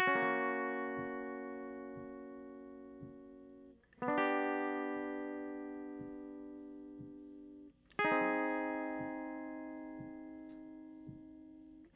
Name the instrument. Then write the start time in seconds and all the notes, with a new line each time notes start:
electric guitar
0.00 F#4
0.08 C#4
0.16 A#3
0.25 E3
4.03 B3
4.09 D4
4.18 G4
8.00 G#4
8.05 D#4
8.12 C4
8.23 F#3